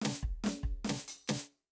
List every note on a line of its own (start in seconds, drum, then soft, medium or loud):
0.02 snare medium
0.05 snare loud
0.23 kick soft
0.44 snare medium
0.46 snare loud
0.63 kick soft
0.85 snare medium
0.89 snare loud
1.08 closed hi-hat loud
1.28 snare loud
1.28 hi-hat pedal loud